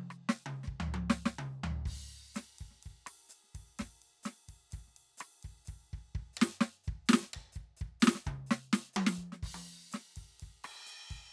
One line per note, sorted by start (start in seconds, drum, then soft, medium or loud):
0.10 cross-stick medium
0.29 snare medium
0.46 mid tom loud
0.64 kick soft
0.64 snare soft
0.80 floor tom loud
0.94 high tom medium
1.10 snare loud
1.26 snare medium
1.39 mid tom loud
1.64 floor tom loud
1.86 kick soft
1.86 crash medium
1.92 kick soft
2.35 snare medium
2.35 hi-hat pedal medium
2.35 ride medium
2.59 kick soft
2.59 ride soft
2.66 kick soft
2.71 snare soft
2.75 snare soft
2.79 snare soft
2.79 hi-hat pedal soft
2.83 kick soft
2.83 ride soft
2.91 kick soft
3.06 cross-stick medium
3.06 ride medium
3.29 hi-hat pedal medium
3.29 ride soft
3.44 snare soft
3.55 kick soft
3.55 ride medium
3.60 kick soft
3.79 kick soft
3.79 snare medium
3.79 hi-hat pedal soft
3.79 ride medium
3.86 kick soft
4.02 ride soft
4.23 snare medium
4.23 hi-hat pedal medium
4.23 ride medium
4.49 kick soft
4.49 ride soft
4.71 kick soft
4.71 hi-hat pedal soft
4.71 ride medium
4.79 kick soft
4.87 snare soft
4.97 ride soft
5.17 cross-stick medium
5.17 hi-hat pedal medium
5.17 ride medium
5.43 kick soft
5.43 ride soft
5.50 kick soft
5.65 kick soft
5.65 hi-hat pedal medium
5.65 ride medium
5.74 kick soft
5.93 kick soft
5.99 kick soft
6.15 kick soft
6.24 kick soft
6.33 hi-hat pedal soft
6.33 floor tom loud
6.42 snare loud
6.61 snare loud
6.84 hi-hat pedal soft
6.88 kick medium
6.95 kick soft
6.97 kick soft
7.06 snare loud
7.06 hi-hat pedal soft
7.13 snare loud
7.23 snare soft
7.29 hi-hat pedal soft
7.33 kick soft
7.33 floor tom loud
7.52 kick soft
7.52 hi-hat pedal medium
7.61 kick soft
7.77 hi-hat pedal medium
7.81 kick soft
7.88 kick soft
8.00 snare loud
8.00 hi-hat pedal medium
8.07 snare loud
8.15 snare soft
8.25 kick soft
8.25 hi-hat pedal medium
8.25 mid tom medium
8.33 kick soft
8.46 hi-hat pedal soft
8.51 snare loud
8.73 snare loud
8.73 hi-hat pedal medium
8.88 snare soft
8.93 hi-hat pedal medium
8.93 high tom loud
9.07 snare loud
9.14 hi-hat pedal medium
9.18 kick soft
9.32 snare soft
9.43 kick soft
9.43 cross-stick soft
9.43 hi-hat pedal soft
9.43 crash medium
9.49 kick soft
9.54 high tom soft
9.91 snare medium
9.91 hi-hat pedal medium
9.91 ride medium
10.16 kick soft
10.16 ride medium
10.22 kick soft
10.39 kick soft
10.39 hi-hat pedal soft
10.39 ride soft
10.48 kick soft
10.64 cross-stick medium
10.64 ride medium
10.87 hi-hat pedal medium
10.87 ride soft
11.11 kick soft
11.11 ride soft
11.16 kick soft